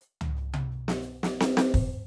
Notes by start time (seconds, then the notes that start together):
0.02 hi-hat pedal
0.21 floor tom
0.35 snare
0.52 hi-hat pedal, high tom
0.70 snare
0.88 snare
1.02 cross-stick, hi-hat pedal
1.23 snare
1.41 snare
1.57 snare
1.74 open hi-hat, kick